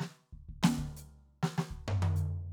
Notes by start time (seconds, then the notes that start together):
0.01 snare
0.33 kick
0.49 kick
0.63 snare, high tom
0.79 kick
0.97 hi-hat pedal
1.43 snare
1.58 snare
1.71 kick
1.88 floor tom
2.03 high tom
2.17 hi-hat pedal